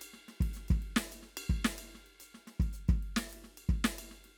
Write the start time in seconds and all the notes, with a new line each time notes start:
0.01 hi-hat pedal, ride bell
0.14 snare
0.28 snare, ride
0.41 kick, ride
0.53 snare, hi-hat pedal
0.69 kick, ride bell
0.82 ride
0.96 snare
1.11 hi-hat pedal, ride bell
1.23 snare
1.37 ride bell
1.50 kick
1.65 snare, hi-hat pedal
1.78 ride bell
1.95 snare
2.06 snare, ride
2.20 hi-hat pedal, ride bell
2.34 snare
2.47 snare, ride
2.60 kick, ride bell
2.73 hi-hat pedal
2.89 kick, ride bell
3.03 ride
3.16 snare
3.29 hi-hat pedal, ride
3.44 snare
3.57 ride bell
3.69 kick
3.84 snare, hi-hat pedal
3.99 ride bell
4.09 snare, hi-hat pedal
4.24 snare, ride